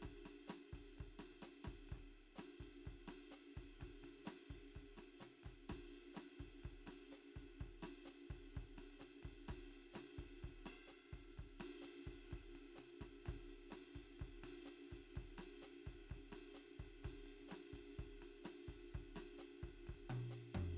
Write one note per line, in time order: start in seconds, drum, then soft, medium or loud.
0.01 kick soft
0.01 cross-stick soft
0.01 snare soft
0.01 hi-hat pedal soft
0.01 ride medium
0.09 kick soft
0.16 snare soft
0.25 cross-stick soft
0.25 ride medium
0.47 cross-stick soft
0.47 hi-hat pedal medium
0.47 ride soft
0.73 kick soft
0.73 ride soft
0.78 kick soft
0.96 hi-hat pedal soft
0.96 ride soft
1.00 kick soft
1.05 kick soft
1.19 cross-stick soft
1.19 ride medium
1.31 snare soft
1.42 cross-stick soft
1.42 hi-hat pedal medium
1.42 ride soft
1.64 kick soft
1.64 cross-stick soft
1.64 ride soft
1.72 kick soft
1.89 kick soft
1.89 ride soft
1.94 kick soft
1.94 snare soft
2.11 ride soft
2.35 cross-stick soft
2.35 hi-hat pedal medium
2.39 ride medium
2.60 kick soft
2.60 ride soft
2.85 kick soft
2.85 ride soft
2.92 kick soft
3.08 cross-stick soft
3.08 ride medium
3.31 hi-hat pedal medium
3.31 ride soft
3.57 kick soft
3.57 ride soft
3.62 kick soft
3.79 kick soft
3.79 snare soft
3.79 ride medium
3.87 kick soft
4.02 snare soft
4.02 ride soft
4.18 snare soft
4.25 cross-stick soft
4.25 hi-hat pedal medium
4.25 ride medium
4.50 kick soft
4.50 ride soft
4.55 kick soft
4.75 kick soft
4.75 ride soft
4.81 kick soft
4.97 cross-stick soft
4.97 ride medium
5.20 cross-stick soft
5.20 snare soft
5.20 hi-hat pedal medium
5.20 ride soft
5.43 kick soft
5.43 snare soft
5.43 ride soft
5.69 kick soft
5.69 cross-stick soft
5.69 ride medium
5.76 kick soft
5.92 ride soft
6.14 cross-stick soft
6.14 hi-hat pedal medium
6.14 ride medium
6.39 kick soft
6.39 ride soft
6.45 kick soft
6.63 kick soft
6.63 ride soft
6.70 kick soft
6.86 cross-stick soft
6.86 ride medium
7.12 hi-hat pedal medium
7.12 ride soft
7.36 kick soft
7.36 ride soft
7.41 kick soft
7.60 kick soft
7.60 ride soft
7.66 kick soft
7.82 cross-stick soft
7.82 snare soft
7.82 ride medium
8.05 hi-hat pedal medium
8.05 ride soft
8.30 kick soft
8.30 ride soft
8.35 kick soft
8.55 kick soft
8.55 ride soft
8.62 kick soft
8.78 cross-stick soft
8.78 ride medium
8.99 snare soft
8.99 hi-hat pedal medium
8.99 ride medium
9.23 kick soft
9.23 snare soft
9.23 ride soft
9.30 kick soft
9.46 kick soft
9.46 cross-stick soft
9.46 hi-hat pedal soft
9.46 ride medium
9.55 kick soft
9.71 ride soft
9.93 cross-stick soft
9.93 snare soft
9.93 hi-hat pedal medium
9.93 ride medium
10.18 kick soft
10.18 ride soft
10.23 kick soft
10.43 kick soft
10.43 ride soft
10.49 kick soft
10.65 cross-stick soft
10.65 snare soft
10.65 ride bell medium
10.87 hi-hat pedal medium
10.91 ride soft
11.13 kick soft
11.13 ride soft
11.18 kick soft
11.38 kick soft
11.38 ride soft
11.44 kick soft
11.59 cross-stick soft
11.59 snare soft
11.59 ride medium
11.81 hi-hat pedal medium
11.81 ride soft
12.07 kick soft
12.07 ride soft
12.12 kick soft
12.31 kick soft
12.31 ride soft
12.38 kick soft
12.55 snare soft
12.55 ride soft
12.75 snare soft
12.75 hi-hat pedal medium
12.75 ride medium
13.01 kick soft
13.01 cross-stick soft
13.01 snare soft
13.01 ride soft
13.13 snare soft
13.25 kick soft
13.25 snare soft
13.25 ride medium
13.34 kick soft
13.49 ride soft
13.70 cross-stick soft
13.70 snare soft
13.70 hi-hat pedal medium
13.70 ride medium
13.95 kick soft
13.95 ride soft
14.19 kick soft
14.19 ride soft
14.26 kick soft
14.43 snare soft
14.43 ride medium
14.65 hi-hat pedal medium
14.65 ride soft
14.91 kick soft
14.91 ride soft
15.13 kick soft
15.13 hi-hat pedal soft
15.13 ride soft
15.22 kick soft
15.38 cross-stick soft
15.38 ride medium
15.62 hi-hat pedal medium
15.62 ride soft
15.86 kick soft
15.86 ride soft
15.92 kick soft
16.10 kick soft
16.10 ride soft
16.16 kick soft
16.32 cross-stick soft
16.32 ride medium
16.54 hi-hat pedal medium
16.54 ride soft
16.79 kick soft
16.79 ride soft
16.84 kick soft
17.03 kick soft
17.03 snare soft
17.03 ride medium
17.10 kick soft
17.26 ride soft
17.41 snare soft
17.48 cross-stick soft
17.48 hi-hat pedal medium
17.48 ride medium
17.73 kick soft
17.73 ride soft
17.99 kick soft
17.99 ride soft
18.04 kick soft
18.22 cross-stick soft
18.22 ride medium
18.44 cross-stick soft
18.44 hi-hat pedal medium
18.44 ride medium
18.68 kick soft
18.68 ride soft
18.73 kick soft
18.94 kick soft
18.94 ride soft
19.00 kick soft
19.15 cross-stick soft
19.15 snare soft
19.15 ride medium
19.38 hi-hat pedal medium
19.38 ride soft
19.61 kick soft
19.61 mid tom soft
19.61 ride soft
19.68 kick soft
19.87 kick soft
19.87 ride soft
19.94 kick soft
20.09 high tom medium
20.09 ride medium
20.30 hi-hat pedal medium
20.30 ride soft
20.54 kick soft
20.54 mid tom medium
20.54 ride medium
20.62 kick soft